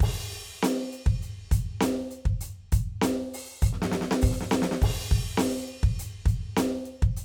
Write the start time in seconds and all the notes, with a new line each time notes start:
0.01 kick, crash
0.32 closed hi-hat
0.63 closed hi-hat, snare
0.93 closed hi-hat
1.07 kick
1.23 closed hi-hat
1.52 closed hi-hat, kick
1.81 closed hi-hat, snare
2.12 closed hi-hat
2.26 kick
2.42 closed hi-hat
2.73 closed hi-hat, kick
3.02 closed hi-hat, snare
3.34 open hi-hat
3.62 open hi-hat, kick
3.67 hi-hat pedal
3.73 snare
3.83 snare
3.92 snare
4.01 snare, hi-hat pedal
4.12 snare
4.22 open hi-hat, kick
4.32 snare
4.41 snare
4.52 snare
4.63 snare
4.72 snare
4.82 kick, crash
5.12 kick, snare
5.38 open hi-hat, snare
5.68 closed hi-hat
5.84 kick, snare
6.00 closed hi-hat
6.26 closed hi-hat, kick, snare
6.57 closed hi-hat, snare
6.86 closed hi-hat
7.03 kick, snare
7.17 closed hi-hat